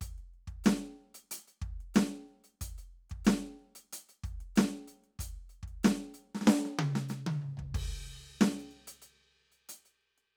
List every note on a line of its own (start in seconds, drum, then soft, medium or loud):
0.01 closed hi-hat medium
0.01 kick medium
0.18 closed hi-hat soft
0.34 closed hi-hat soft
0.47 kick soft
0.47 closed hi-hat soft
0.64 closed hi-hat medium
0.64 snare loud
1.14 closed hi-hat medium
1.31 closed hi-hat loud
1.47 closed hi-hat soft
1.62 kick medium
1.62 closed hi-hat soft
1.80 closed hi-hat soft
1.94 closed hi-hat medium
1.94 snare loud
2.28 closed hi-hat soft
2.44 closed hi-hat soft
2.61 closed hi-hat loud
2.61 kick medium
2.78 closed hi-hat soft
3.10 kick soft
3.10 closed hi-hat soft
3.25 closed hi-hat medium
3.25 snare loud
3.59 closed hi-hat soft
3.75 closed hi-hat medium
3.93 closed hi-hat loud
4.09 closed hi-hat soft
4.24 closed hi-hat soft
4.24 kick medium
4.40 closed hi-hat soft
4.56 closed hi-hat medium
4.56 snare loud
4.87 closed hi-hat soft
5.04 closed hi-hat soft
5.19 closed hi-hat loud
5.19 kick medium
5.35 closed hi-hat soft
5.49 closed hi-hat soft
5.63 kick soft
5.68 closed hi-hat soft
5.83 closed hi-hat medium
5.83 snare loud
6.14 closed hi-hat medium
6.35 snare medium
6.41 snare medium
6.45 snare soft
6.47 snare loud
6.65 snare soft
6.79 high tom loud
6.95 snare medium
7.09 snare medium
7.09 hi-hat pedal medium
7.26 high tom loud
7.42 mid tom soft
7.57 kick soft
7.57 floor tom soft
7.74 kick medium
7.74 crash medium
7.89 closed hi-hat soft
8.06 closed hi-hat soft
8.23 closed hi-hat soft
8.41 snare loud
8.59 closed hi-hat soft
8.71 closed hi-hat soft
8.87 closed hi-hat medium
9.02 closed hi-hat medium
9.19 closed hi-hat soft
9.52 closed hi-hat soft
9.69 closed hi-hat medium
9.85 closed hi-hat soft
10.01 closed hi-hat soft
10.18 closed hi-hat soft